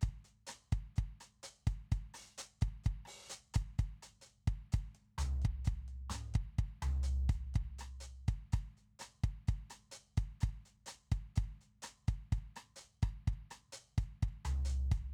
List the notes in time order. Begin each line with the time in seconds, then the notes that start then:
0.01 closed hi-hat, kick, cross-stick
0.08 kick
0.24 closed hi-hat
0.47 closed hi-hat, cross-stick, snare, hi-hat pedal
0.72 closed hi-hat, kick
0.96 closed hi-hat, kick
1.20 closed hi-hat, cross-stick
1.43 hi-hat pedal
1.67 closed hi-hat, kick
1.92 closed hi-hat, kick
2.14 open hi-hat, cross-stick
2.38 hi-hat pedal
2.61 closed hi-hat, kick
2.68 kick
2.84 closed hi-hat, kick
3.05 open hi-hat, cross-stick
3.30 closed hi-hat, hi-hat pedal
3.54 closed hi-hat, kick, cross-stick
3.62 kick
3.79 closed hi-hat, kick
4.02 closed hi-hat, cross-stick, snare
4.21 hi-hat pedal
4.26 closed hi-hat
4.47 kick, closed hi-hat
4.72 closed hi-hat, kick, snare
4.95 closed hi-hat
5.18 floor tom, hi-hat pedal, open hi-hat
5.42 kick, closed hi-hat
5.65 closed hi-hat, kick
5.88 closed hi-hat
6.10 closed hi-hat, snare, hi-hat pedal, mid tom
6.15 cross-stick
6.34 kick, closed hi-hat
6.58 kick, closed hi-hat
6.82 closed hi-hat, floor tom
7.03 closed hi-hat, hi-hat pedal
7.29 closed hi-hat, kick
7.35 kick
7.54 kick, closed hi-hat
7.79 closed hi-hat, cross-stick, snare
8.00 closed hi-hat, hi-hat pedal
8.28 closed hi-hat, kick
8.52 closed hi-hat, kick, cross-stick
8.77 closed hi-hat
8.99 closed hi-hat, cross-stick, hi-hat pedal
9.24 closed hi-hat, kick
9.47 closed hi-hat, kick
9.70 closed hi-hat, cross-stick
9.91 closed hi-hat, hi-hat pedal
10.17 closed hi-hat, kick
10.41 closed hi-hat, kick, cross-stick
10.49 kick
10.65 closed hi-hat
10.86 closed hi-hat, cross-stick, snare, hi-hat pedal
11.12 closed hi-hat, kick
11.36 closed hi-hat, kick, snare
11.44 kick
11.61 closed hi-hat
11.82 closed hi-hat, cross-stick, hi-hat pedal
12.08 closed hi-hat, kick
12.32 closed hi-hat, kick
12.38 kick
12.56 closed hi-hat, cross-stick, snare
12.76 hi-hat pedal
12.80 closed hi-hat
13.02 closed hi-hat, kick, cross-stick, snare
13.09 kick
13.27 closed hi-hat, kick
13.33 kick
13.50 closed hi-hat, cross-stick, snare
13.72 closed hi-hat, hi-hat pedal
13.98 closed hi-hat, kick
14.03 kick
14.23 kick, closed hi-hat
14.28 kick
14.45 closed hi-hat, floor tom
14.65 hi-hat pedal
14.69 closed hi-hat
14.92 closed hi-hat, kick
14.97 kick